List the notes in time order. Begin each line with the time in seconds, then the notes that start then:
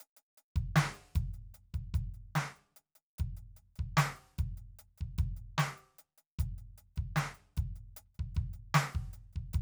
0.01 closed hi-hat
0.17 closed hi-hat
0.37 closed hi-hat
0.56 kick, closed hi-hat
0.76 snare, closed hi-hat
0.94 closed hi-hat
1.15 kick, closed hi-hat
1.34 closed hi-hat
1.54 closed hi-hat
1.74 kick, closed hi-hat
1.94 kick, closed hi-hat
2.14 closed hi-hat
2.35 snare, closed hi-hat
2.56 closed hi-hat
2.76 closed hi-hat
2.95 closed hi-hat
3.18 kick, closed hi-hat
3.37 closed hi-hat
3.56 closed hi-hat
3.76 kick, closed hi-hat
3.97 closed hi-hat, snare
4.16 closed hi-hat
4.38 kick, closed hi-hat
4.57 closed hi-hat
4.79 closed hi-hat
4.98 kick, closed hi-hat
5.18 kick, closed hi-hat
5.36 closed hi-hat
5.58 snare, closed hi-hat
5.77 closed hi-hat
5.98 closed hi-hat
6.18 closed hi-hat
6.39 closed hi-hat, kick
6.58 closed hi-hat
6.78 closed hi-hat
6.96 kick, closed hi-hat
7.16 closed hi-hat, snare
7.34 closed hi-hat
7.57 kick, closed hi-hat
7.76 closed hi-hat
7.96 closed hi-hat
8.14 closed hi-hat
8.19 kick
8.35 kick, snare, closed hi-hat
8.53 closed hi-hat
8.74 closed hi-hat, snare
8.93 kick, closed hi-hat
9.13 closed hi-hat
9.33 kick, closed hi-hat
9.53 kick, closed hi-hat